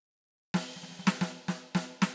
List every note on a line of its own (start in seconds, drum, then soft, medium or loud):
0.54 snare loud
0.54 ride loud
0.76 snare soft
0.83 snare soft
0.88 snare soft
0.91 snare soft
0.99 snare soft
1.05 snare soft
1.07 snare loud
1.21 snare loud
1.48 snare medium
1.75 snare loud
2.02 snare loud